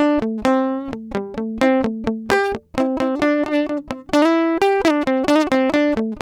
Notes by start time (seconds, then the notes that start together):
0.00 D4
0.24 A3
0.47 C4
0.95 A3
1.17 G3
1.40 A3
1.63 C4
1.86 A3
2.09 A3
2.32 G4
2.80 C4
3.02 C4
3.24 D4
3.55 D4
3.72 D4
3.92 C4
4.15 E4
4.63 G4
4.87 D4
5.09 C4
5.30 D#4
5.54 C4
5.76 D4
5.99 A3